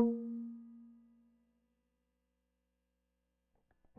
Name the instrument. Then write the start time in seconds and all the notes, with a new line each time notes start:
electric guitar
0.00 A#3